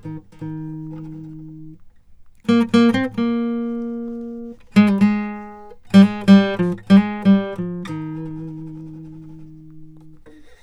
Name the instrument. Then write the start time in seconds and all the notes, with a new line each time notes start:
acoustic guitar
0.05 D#3
0.43 D#3
0.51 D#3
2.50 A#3
2.75 A#3
2.95 C4
3.19 A#3
4.77 G#3
4.89 G3
5.02 G#3
5.95 G3
6.11 G#3
6.29 G3
6.60 F3
6.91 G3
7.04 G#3
7.27 G3
7.58 F3
7.87 D#3